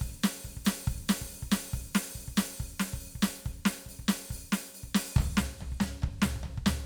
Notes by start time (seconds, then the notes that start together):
0.01 open hi-hat, kick
0.23 open hi-hat, snare
0.44 open hi-hat, kick
0.56 kick
0.65 open hi-hat, snare
0.86 open hi-hat, kick, snare
1.08 open hi-hat, snare
1.21 kick, snare
1.30 open hi-hat
1.42 kick
1.51 open hi-hat, snare
1.73 open hi-hat, kick
1.94 open hi-hat, snare
2.15 open hi-hat, kick
2.28 kick
2.37 open hi-hat, snare
2.58 open hi-hat, kick
2.79 open hi-hat, snare
2.93 kick, snare
3.00 open hi-hat
3.15 kick
3.22 open hi-hat, snare
3.44 open hi-hat, kick
3.65 open hi-hat, snare
3.85 open hi-hat, kick, snare
3.99 kick
4.08 open hi-hat, snare
4.30 open hi-hat, kick
4.52 open hi-hat, snare
4.72 open hi-hat, snare
4.83 kick
4.94 open hi-hat, snare
5.16 kick, snare, floor tom
5.37 snare, floor tom
5.61 kick, floor tom
5.80 snare, floor tom
5.99 kick, snare, floor tom
6.22 snare, floor tom
6.36 kick
6.43 floor tom
6.57 kick
6.66 snare, floor tom